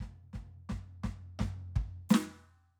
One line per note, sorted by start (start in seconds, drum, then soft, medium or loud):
0.00 kick soft
0.00 snare soft
0.00 floor tom soft
0.34 kick soft
0.34 snare soft
0.34 floor tom soft
0.70 kick soft
0.70 snare medium
0.70 floor tom medium
1.04 kick soft
1.04 snare medium
1.04 floor tom medium
1.40 kick medium
1.40 snare medium
1.40 floor tom medium
1.76 kick medium
1.76 floor tom medium
2.10 snare loud
2.10 hi-hat pedal loud
2.15 snare loud